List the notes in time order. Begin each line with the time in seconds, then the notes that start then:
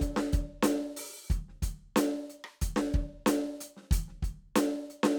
0.01 closed hi-hat, kick
0.16 snare
0.32 closed hi-hat, kick
0.63 open hi-hat, snare
0.96 open hi-hat
1.27 closed hi-hat, kick, hi-hat pedal
1.48 snare
1.54 snare
1.62 closed hi-hat, kick
1.96 closed hi-hat, snare
2.29 closed hi-hat
2.44 cross-stick
2.61 closed hi-hat, kick
2.76 snare
2.89 snare
2.93 kick, closed hi-hat
3.26 closed hi-hat, snare
3.60 closed hi-hat
3.76 snare
3.82 snare
3.91 closed hi-hat, kick
4.08 snare
4.22 closed hi-hat, kick
4.55 closed hi-hat, snare
4.90 closed hi-hat
5.03 snare